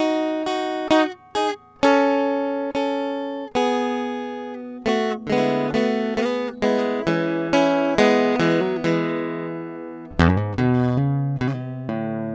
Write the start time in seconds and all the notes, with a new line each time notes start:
0.01 D#4 F#4
0.48 D#4 F#4
0.92 D#4 F#4
1.36 D#4 G#4
1.84 C#4 A4
2.76 C#4 A4
3.56 B3 G#4
4.87 A3 B3 F#4
5.28 D3 G#3
5.34 B3
5.39 E4
5.70 F#4
5.76 A3 B3
6.19 B3 G#4
6.63 G#3 B3 E4
7.08 E3 G#3 C#4
7.54 C#4 E4
8.00 G#3 B3 E4
8.41 E3 G#3
8.63 F#3
8.86 E3 G#3
10.59 B2
11.00 C#3
11.42 B2
11.50 C3
11.58 C3
11.90 A2